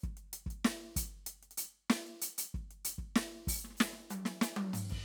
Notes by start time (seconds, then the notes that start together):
0.01 kick, closed hi-hat, hi-hat pedal
0.18 closed hi-hat
0.34 closed hi-hat
0.47 kick
0.51 closed hi-hat
0.65 snare
0.97 closed hi-hat, kick
1.27 closed hi-hat
1.44 closed hi-hat
1.52 closed hi-hat
1.58 closed hi-hat
1.91 snare
2.08 closed hi-hat
2.23 closed hi-hat
2.39 closed hi-hat
2.55 kick, closed hi-hat
2.72 closed hi-hat
2.86 closed hi-hat
2.99 kick
3.17 snare
3.48 open hi-hat, kick
3.65 snare
3.71 snare
3.76 snare, hi-hat pedal
3.81 snare
3.94 snare
3.99 snare
4.11 hi-hat pedal, high tom
4.26 snare
4.42 snare, hi-hat pedal
4.57 high tom
4.74 floor tom, hi-hat pedal
4.91 kick, crash